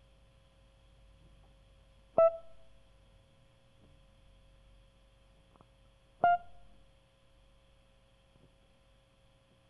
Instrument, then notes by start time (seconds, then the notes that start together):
electric guitar
2.18 E5
6.24 F5